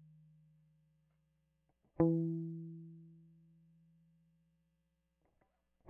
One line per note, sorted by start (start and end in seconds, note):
2.01 4.78 E3